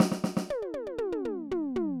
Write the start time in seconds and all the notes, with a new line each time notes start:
0.00 snare
0.12 snare
0.24 snare
0.37 snare
0.50 high tom
0.62 high tom
0.74 high tom
0.87 high tom
0.98 mid tom
1.12 mid tom
1.25 mid tom
1.51 floor tom
1.76 floor tom